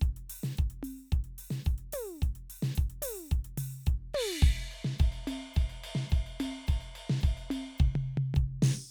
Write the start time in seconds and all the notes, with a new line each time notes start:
0.01 kick, closed hi-hat, hi-hat pedal
0.18 closed hi-hat
0.31 open hi-hat
0.45 snare
0.58 kick, closed hi-hat, hi-hat pedal
0.72 closed hi-hat
0.85 open hi-hat, high tom
1.12 kick, closed hi-hat, hi-hat pedal
1.26 closed hi-hat
1.40 open hi-hat
1.52 snare
1.66 kick, hi-hat pedal, open hi-hat
1.80 closed hi-hat
1.94 open hi-hat, high tom
2.23 kick, closed hi-hat, hi-hat pedal
2.37 closed hi-hat
2.52 open hi-hat
2.64 snare
2.77 kick, hi-hat pedal, open hi-hat
2.91 closed hi-hat
3.03 open hi-hat, high tom
3.30 kick, closed hi-hat, hi-hat pedal
3.46 closed hi-hat
3.59 floor tom, open hi-hat
3.86 kick, closed hi-hat, hi-hat pedal
4.16 high tom, crash
4.43 kick, hi-hat pedal, ride
4.59 ride
4.73 ride
4.86 snare
5.00 kick, hi-hat pedal, ride
5.14 ride
5.29 high tom, ride
5.55 kick, hi-hat pedal, ride
5.71 ride
5.85 ride
5.97 snare
6.11 kick, hi-hat pedal, ride
6.28 ride
6.42 kick, high tom, ride
6.69 kick, hi-hat pedal, ride
6.83 ride
6.97 ride
7.11 snare
7.22 kick, hi-hat pedal, ride
7.39 ride
7.52 high tom, ride
7.79 kick, floor tom, hi-hat pedal
7.97 floor tom
8.10 kick
8.19 floor tom
8.36 kick, floor tom, hi-hat pedal
8.64 snare, crash